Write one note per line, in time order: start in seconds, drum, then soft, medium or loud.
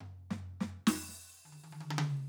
0.02 floor tom medium
0.30 snare medium
0.30 floor tom medium
0.60 snare medium
0.60 floor tom soft
0.87 open hi-hat loud
0.87 snare loud
1.08 snare soft
1.45 high tom soft
1.52 high tom soft
1.64 high tom soft
1.72 high tom medium
1.80 high tom medium
1.90 high tom medium
1.98 high tom loud